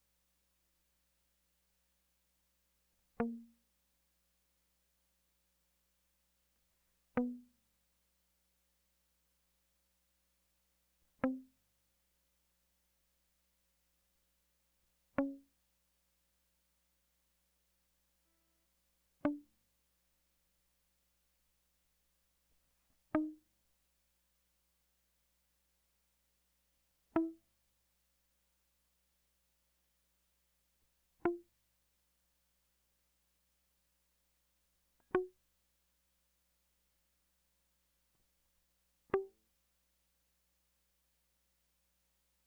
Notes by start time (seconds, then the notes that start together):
3.21 A#3
7.18 B3
11.24 C4
15.19 C#4
19.25 D4
23.15 D#4
27.16 E4
31.26 F4
35.15 F#4
39.14 G4